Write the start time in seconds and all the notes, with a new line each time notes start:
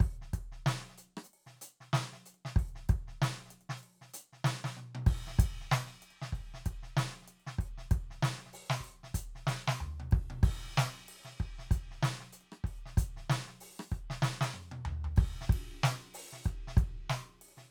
0.01 kick, open hi-hat
0.16 hi-hat pedal
0.22 snare
0.34 kick, closed hi-hat
0.53 snare
0.67 snare, hi-hat pedal
0.82 snare
0.90 snare
0.99 closed hi-hat
1.09 closed hi-hat
1.18 cross-stick
1.24 hi-hat pedal
1.34 open hi-hat
1.47 snare
1.57 snare, hi-hat pedal
1.62 closed hi-hat
1.81 snare
1.94 snare
2.13 snare
2.27 closed hi-hat
2.35 closed hi-hat
2.46 snare
2.57 kick, open hi-hat
2.69 hi-hat pedal
2.76 snare
2.90 kick, closed hi-hat
3.08 snare
3.23 snare
3.39 snare
3.47 snare
3.51 closed hi-hat
3.62 open hi-hat
3.70 snare
3.78 hi-hat pedal
3.84 open hi-hat
4.02 snare
4.09 hi-hat pedal
4.14 closed hi-hat
4.34 snare
4.45 snare
4.65 snare
4.78 hi-hat pedal, high tom
4.96 high tom
5.07 kick, crash
5.28 snare
5.40 kick, closed hi-hat
5.62 snare
5.72 snare, hi-hat pedal
5.87 snare
5.95 hi-hat pedal
6.03 closed hi-hat
6.11 closed hi-hat
6.23 snare
6.33 kick, open hi-hat
6.55 snare
6.67 kick, closed hi-hat
6.84 snare
6.98 snare, hi-hat pedal
7.12 snare
7.23 snare
7.29 closed hi-hat
7.41 open hi-hat
7.48 snare
7.59 kick, open hi-hat
7.67 hi-hat pedal
7.79 snare
7.92 kick, closed hi-hat
8.11 snare
8.23 snare
8.39 snare
8.47 snare
8.54 open hi-hat
8.63 open hi-hat
8.71 snare
8.81 kick
8.85 open hi-hat
8.91 hi-hat pedal
9.04 snare
9.15 closed hi-hat, kick
9.36 snare
9.48 snare
9.52 hi-hat pedal
9.68 snare
9.76 hi-hat pedal
9.81 floor tom
10.01 high tom
10.12 kick, ride
10.31 high tom
10.44 kick, crash
10.78 snare, hi-hat pedal
10.86 snare
11.09 open hi-hat
11.26 snare
11.41 kick, closed hi-hat
11.59 snare
11.72 closed hi-hat, kick
11.92 snare
12.04 snare
12.21 snare
12.33 closed hi-hat
12.42 open hi-hat
12.53 cross-stick
12.65 kick, snare, open hi-hat
12.79 hi-hat pedal
12.87 snare
12.98 closed hi-hat, kick
13.17 kick, snare
13.31 snare
13.48 snare
13.61 open hi-hat
13.80 cross-stick
13.93 kick, open hi-hat
14.11 snare
14.19 kick
14.23 snare
14.42 snare
14.54 mid tom
14.72 high tom
14.86 floor tom
15.05 floor tom
15.17 kick, crash
15.42 snare
15.50 kick, ride
15.84 snare, hi-hat pedal
16.15 open hi-hat
16.33 snare
16.46 kick, open hi-hat
16.68 snare
16.78 kick, closed hi-hat
17.10 snare, closed hi-hat
17.42 open hi-hat
17.49 open hi-hat
17.58 snare